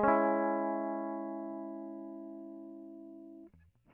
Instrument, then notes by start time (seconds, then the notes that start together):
electric guitar
0.00 G#3
0.04 C#4
0.08 E4
3.57 E2